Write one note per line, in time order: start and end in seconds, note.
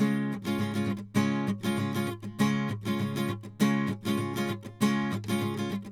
0.01 0.40 C#3
0.01 0.41 G#3
0.01 0.41 C#4
0.01 0.39 F4
0.48 0.59 C#3
0.48 0.59 G#3
0.48 0.60 C#4
0.48 0.61 F4
0.60 0.78 C#3
0.60 0.77 G#3
0.60 0.76 C#4
0.60 0.74 F4
0.76 0.88 C#3
0.76 0.87 G#3
0.76 0.96 C#4
0.76 0.97 F4
0.87 0.96 C#3
0.87 0.95 G#3
1.16 1.54 C#3
1.16 1.55 G#3
1.16 1.55 C#4
1.16 1.57 F4
1.66 1.78 C#3
1.66 1.79 G#3
1.66 1.79 C#4
1.66 1.75 F4
1.75 1.98 C#3
1.75 1.98 G#3
1.75 1.97 F4
1.79 1.98 C#4
1.97 2.17 C#3
1.97 2.17 G#3
1.97 2.17 C#4
1.97 2.19 F4
2.40 2.77 C#3
2.40 2.77 G#3
2.40 2.76 C#4
2.40 2.80 F4
2.88 3.01 C#3
2.88 3.00 G#3
2.88 3.02 C#4
2.88 2.98 F4
2.98 3.20 C#3
2.98 3.19 G#3
2.98 3.12 F4
3.02 3.19 C#4
3.18 3.37 C#3
3.18 3.39 G#3
3.18 3.36 C#4
3.18 3.40 F4
3.61 3.97 C#3
3.61 3.97 G#3
3.61 3.97 C#4
3.61 3.99 F4
4.08 4.20 G#3
4.08 4.18 C#4
4.08 4.18 F4
4.18 4.39 C#3
4.18 4.39 G#3
4.18 4.37 C#4
4.18 4.38 F4
4.38 4.50 C#3
4.38 4.59 G#3
4.38 4.56 C#4
4.38 4.60 F4
4.50 4.73 C#3
4.82 5.21 C#3
4.82 5.21 G#3
4.82 5.20 C#4
4.82 5.22 F4
5.31 5.42 C#3
5.31 5.43 G#3
5.31 5.41 C#4
5.31 5.41 F4
5.41 5.76 C#3
5.41 5.61 G#3
5.41 5.58 C#4
5.41 5.57 F4
5.60 5.82 G#3
5.60 5.73 C#4
5.60 5.74 F4